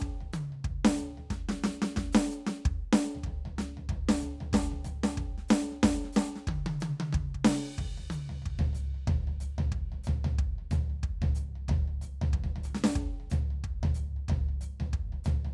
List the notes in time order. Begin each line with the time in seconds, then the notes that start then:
0.01 kick, floor tom
0.21 floor tom
0.33 hi-hat pedal, high tom
0.52 floor tom
0.64 kick, floor tom
0.85 snare
0.97 floor tom, hi-hat pedal
1.17 floor tom
1.30 kick, snare
1.49 snare
1.63 snare, hi-hat pedal
1.82 snare
1.96 kick, snare
2.13 closed hi-hat, snare
2.30 hi-hat pedal
2.47 snare
2.65 kick
2.93 snare
2.97 hi-hat pedal
3.15 floor tom
3.24 kick, floor tom
3.45 floor tom
3.58 snare, hi-hat pedal
3.77 floor tom
3.89 kick, floor tom
4.09 snare
4.21 floor tom, hi-hat pedal
4.40 floor tom
4.53 kick, snare
4.72 floor tom
4.84 floor tom, hi-hat pedal
5.03 snare
5.17 kick, floor tom
5.38 snare
5.49 snare, hi-hat pedal
5.71 snare
5.83 kick, snare
6.04 snare
6.13 snare, hi-hat pedal
6.36 snare
6.47 kick, high tom
6.66 high tom
6.80 hi-hat pedal, high tom
7.00 high tom
7.13 kick, high tom
7.34 kick
7.45 snare, hi-hat pedal, crash
7.50 snare
7.78 kick, floor tom
7.97 floor tom
8.10 hi-hat pedal, high tom
8.29 floor tom
8.42 kick, floor tom
8.59 floor tom
8.73 floor tom, hi-hat pedal
8.94 floor tom
9.07 kick, floor tom
9.27 floor tom
9.40 floor tom, hi-hat pedal
9.58 floor tom
9.72 kick, floor tom
9.92 floor tom
10.04 floor tom, hi-hat pedal
10.24 floor tom
10.39 kick, floor tom
10.58 floor tom
10.71 floor tom, hi-hat pedal
10.90 floor tom
11.03 kick, floor tom
11.22 floor tom
11.35 floor tom, hi-hat pedal
11.55 floor tom
11.68 kick, floor tom
11.88 floor tom
12.01 floor tom, hi-hat pedal
12.21 floor tom
12.33 kick, floor tom
12.44 floor tom
12.56 floor tom
12.63 hi-hat pedal, high tom
12.75 snare
12.84 snare
12.95 kick, floor tom
13.20 floor tom
13.30 floor tom, hi-hat pedal
13.50 floor tom
13.64 kick, floor tom
13.83 floor tom
13.94 floor tom, hi-hat pedal
14.16 floor tom
14.28 kick, floor tom
14.49 floor tom
14.61 floor tom, hi-hat pedal
14.80 floor tom
14.93 kick, floor tom
15.12 floor tom
15.24 floor tom, hi-hat pedal
15.45 floor tom